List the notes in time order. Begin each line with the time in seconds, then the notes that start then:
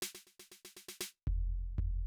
0.02 snare, hi-hat pedal
0.15 snare
0.27 snare
0.39 snare
0.51 snare
0.65 snare
0.76 snare
0.88 snare
1.01 snare
1.27 kick, floor tom
1.78 kick, floor tom